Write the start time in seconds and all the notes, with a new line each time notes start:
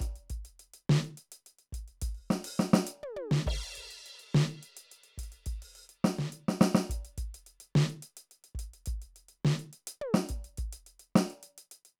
0.01 closed hi-hat, kick
0.16 closed hi-hat
0.30 closed hi-hat, kick
0.45 closed hi-hat
0.60 closed hi-hat
0.74 closed hi-hat
0.90 snare
1.04 closed hi-hat
1.17 closed hi-hat
1.32 closed hi-hat
1.46 closed hi-hat
1.59 closed hi-hat
1.73 closed hi-hat, kick
1.88 closed hi-hat
2.02 open hi-hat, kick
2.15 open hi-hat
2.31 snare
2.45 open hi-hat
2.59 snare
2.74 snare
2.87 closed hi-hat
3.03 high tom
3.16 high tom
3.31 snare
3.47 kick, crash
3.53 kick
3.56 kick
3.63 closed hi-hat
3.75 closed hi-hat, kick
3.91 closed hi-hat
4.06 closed hi-hat
4.20 closed hi-hat
4.35 snare
4.50 closed hi-hat
4.63 closed hi-hat
4.77 closed hi-hat
4.92 closed hi-hat
5.04 closed hi-hat
5.18 closed hi-hat, kick
5.23 open hi-hat
5.32 open hi-hat
5.46 open hi-hat, kick
5.62 open hi-hat
5.75 open hi-hat
5.89 closed hi-hat
6.04 snare
6.19 snare
6.32 closed hi-hat
6.49 snare
6.61 snare
6.75 snare
6.81 hi-hat pedal
6.90 closed hi-hat, kick
6.95 kick
7.05 closed hi-hat
7.18 closed hi-hat, kick
7.34 closed hi-hat
7.47 closed hi-hat
7.60 closed hi-hat
7.76 snare
7.90 closed hi-hat
8.03 closed hi-hat
8.17 closed hi-hat
8.31 closed hi-hat
8.44 closed hi-hat
8.55 kick
8.59 closed hi-hat
8.74 closed hi-hat
8.86 closed hi-hat, kick
9.02 closed hi-hat
9.16 closed hi-hat
9.29 closed hi-hat
9.45 snare
9.59 closed hi-hat
9.73 closed hi-hat
9.87 closed hi-hat
10.01 high tom
10.14 snare
10.24 hi-hat pedal
10.29 closed hi-hat, kick
10.45 closed hi-hat
10.58 closed hi-hat, kick
10.73 closed hi-hat
10.87 closed hi-hat
11.00 closed hi-hat
11.16 snare
11.30 closed hi-hat
11.43 closed hi-hat
11.58 closed hi-hat
11.72 closed hi-hat
11.85 closed hi-hat